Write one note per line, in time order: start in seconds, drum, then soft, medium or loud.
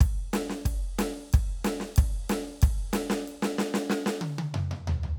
0.00 kick loud
0.00 ride medium
0.33 snare loud
0.33 ride medium
0.50 snare medium
0.65 kick loud
0.65 ride loud
0.99 snare loud
0.99 ride loud
1.33 kick loud
1.33 ride medium
1.65 snare loud
1.65 ride medium
1.80 snare medium
1.96 kick loud
1.96 ride loud
2.29 snare loud
2.29 ride loud
2.62 kick loud
2.62 ride loud
2.93 snare loud
2.93 ride loud
3.10 snare loud
3.28 ride medium
3.42 snare loud
3.58 snare loud
3.74 snare loud
3.90 snare loud
4.06 snare loud
4.21 high tom loud
4.38 high tom loud
4.54 mid tom loud
4.71 mid tom loud
4.87 floor tom loud
5.03 floor tom medium